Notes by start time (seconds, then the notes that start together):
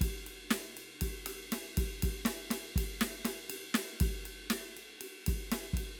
0.01 kick, ride
0.27 ride
0.51 snare, ride
0.77 ride
1.01 kick, ride
1.26 cross-stick, ride
1.52 snare, ride
1.77 kick, ride
2.02 kick, ride
2.25 snare, ride
2.51 snare, ride
2.76 kick, ride
3.01 snare, ride
3.25 snare, ride
3.50 ride
3.74 snare, ride
4.00 kick, ride
4.26 ride
4.50 snare, ride
4.77 ride
5.01 ride
5.27 kick, ride
5.52 snare, ride
5.74 kick, ride